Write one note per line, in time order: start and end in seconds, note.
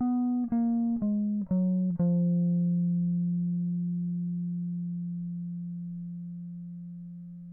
0.01 0.50 B3
0.53 1.01 A#3
1.03 1.47 G#3
1.52 1.99 F#3
2.01 7.53 F3